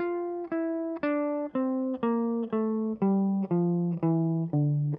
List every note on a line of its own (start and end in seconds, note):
0.00 0.49 F4
0.52 1.00 E4
1.04 1.49 D4
1.56 1.99 C4
2.03 2.48 A#3
2.53 2.96 A3
3.02 3.48 G3
3.52 3.99 F3
4.04 4.48 E3
4.54 4.98 D3